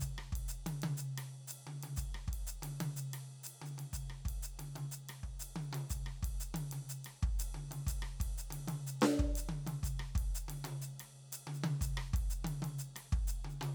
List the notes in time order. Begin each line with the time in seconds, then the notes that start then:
0.01 kick, hi-hat pedal, ride
0.19 cross-stick
0.33 kick, ride
0.49 hi-hat pedal
0.67 high tom, ride
0.83 high tom, ride
0.98 hi-hat pedal
1.18 cross-stick, ride
1.48 hi-hat pedal, ride
1.67 high tom
1.83 high tom, ride
1.97 kick, hi-hat pedal, ride
2.15 cross-stick
2.28 kick
2.34 ride
2.47 hi-hat pedal
2.63 high tom, ride
2.81 high tom, ride
2.97 hi-hat pedal
3.14 cross-stick, ride
3.44 hi-hat pedal, ride
3.62 hi-hat pedal, high tom
3.79 high tom, ride
3.93 kick, hi-hat pedal, ride
4.10 cross-stick
4.26 kick, ride
4.43 hi-hat pedal
4.60 high tom, ride
4.76 high tom, ride
4.92 hi-hat pedal
5.09 cross-stick, ride
5.24 kick
5.40 hi-hat pedal, ride
5.56 high tom
5.62 hi-hat pedal
5.73 high tom, ride
5.90 kick, hi-hat pedal, ride
6.07 cross-stick
6.23 kick, ride
6.41 hi-hat pedal
6.55 high tom, ride
6.72 high tom, ride
6.90 hi-hat pedal
7.05 cross-stick, ride
7.23 kick
7.40 hi-hat pedal, ride
7.55 high tom
7.72 high tom, ride
7.87 kick, hi-hat pedal, ride
8.03 cross-stick
8.21 kick, ride
8.38 hi-hat pedal
8.51 high tom, ride
8.68 high tom, ride
8.87 hi-hat pedal
9.02 snare, ride
9.10 hi-hat pedal
9.20 kick
9.36 hi-hat pedal, ride
9.49 high tom
9.67 high tom, ride
9.84 kick, hi-hat pedal, ride
10.00 cross-stick
10.16 kick, ride
10.35 hi-hat pedal
10.49 high tom, ride
10.57 hi-hat pedal
10.65 high tom, ride
10.82 hi-hat pedal
11.00 cross-stick, ride
11.33 hi-hat pedal, ride
11.48 high tom
11.55 hi-hat pedal
11.64 high tom, ride
11.81 kick, hi-hat pedal, ride
11.98 cross-stick
12.14 kick, ride
12.31 hi-hat pedal
12.45 high tom, ride
12.63 high tom, ride
12.79 hi-hat pedal
12.97 cross-stick, ride
13.13 kick
13.28 hi-hat pedal, ride
13.45 high tom
13.50 hi-hat pedal
13.62 high tom, ride